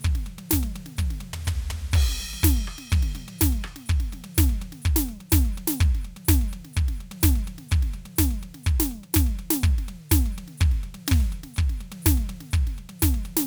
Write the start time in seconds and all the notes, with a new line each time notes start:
0.01 kick, hi-hat pedal, high tom
0.15 snare
0.23 hi-hat pedal, high tom
0.38 high tom
0.49 kick, snare, hi-hat pedal
0.63 high tom
0.72 hi-hat pedal, high tom
0.86 snare
0.97 kick, hi-hat pedal, high tom
1.10 snare
1.21 high tom
1.33 floor tom
1.45 kick, floor tom, hi-hat pedal
1.67 floor tom, hi-hat pedal
1.92 kick, hi-hat pedal, crash
2.09 snare
2.14 hi-hat pedal
2.21 high tom
2.33 high tom
2.40 kick, hi-hat pedal
2.44 snare
2.57 high tom
2.64 cross-stick, hi-hat pedal
2.78 snare
2.90 kick, hi-hat pedal, high tom
3.03 snare
3.13 snare, hi-hat pedal, high tom
3.28 high tom
3.39 kick, snare, hi-hat pedal
3.52 high tom
3.62 cross-stick, hi-hat pedal
3.76 snare
3.86 kick, hi-hat pedal, high tom
4.00 snare
4.09 hi-hat pedal, high tom
4.13 snare
4.24 high tom
4.35 kick, snare, hi-hat pedal
4.49 high tom
4.57 hi-hat pedal
4.62 high tom
4.72 snare
4.82 kick, hi-hat pedal, high tom
4.96 snare
5.05 hi-hat pedal, high tom
5.20 high tom
5.30 kick, snare, hi-hat pedal
5.45 high tom
5.53 hi-hat pedal
5.58 high tom
5.67 snare
5.78 kick, hi-hat pedal
5.83 high tom
5.95 snare
6.00 hi-hat pedal
6.05 high tom
6.16 high tom
6.25 kick, snare, hi-hat pedal
6.41 high tom
6.48 hi-hat pedal
6.53 high tom
6.65 snare
6.73 kick, hi-hat pedal, high tom
6.88 snare
6.95 hi-hat pedal
7.00 high tom
7.11 high tom
7.21 kick, snare, hi-hat pedal
7.36 high tom
7.44 hi-hat pedal, high tom
7.58 snare
7.69 kick, hi-hat pedal, high tom
7.83 snare
7.91 hi-hat pedal, high tom
8.05 high tom
8.16 kick, snare, hi-hat pedal
8.31 high tom
8.38 hi-hat pedal
8.43 high tom
8.54 snare
8.63 kick, hi-hat pedal
8.69 high tom
8.80 snare
8.87 hi-hat pedal
8.91 high tom
9.03 high tom
9.13 kick, snare, hi-hat pedal
9.27 high tom
9.36 hi-hat pedal, high tom
9.51 snare
9.61 kick, hi-hat pedal, high tom
9.78 snare
9.84 hi-hat pedal
9.88 high tom
10.10 kick, snare, hi-hat pedal
10.26 high tom
10.32 hi-hat pedal
10.38 high tom
10.48 snare
10.58 kick, hi-hat pedal, high tom
10.71 snare
10.81 hi-hat pedal, high tom
10.94 high tom
11.07 snare, hi-hat pedal
11.11 kick
11.20 high tom
11.30 hi-hat pedal, high tom
11.44 snare
11.54 hi-hat pedal, high tom
11.58 kick
11.70 snare
11.77 hi-hat pedal, high tom
11.92 high tom
12.02 kick, snare, hi-hat pedal
12.17 high tom
12.25 hi-hat pedal, high tom
12.41 snare
12.51 kick, hi-hat pedal, high tom
12.67 snare
12.74 hi-hat pedal
12.78 high tom
12.89 high tom
12.99 kick, snare, hi-hat pedal
13.14 high tom
13.23 hi-hat pedal, high tom
13.37 snare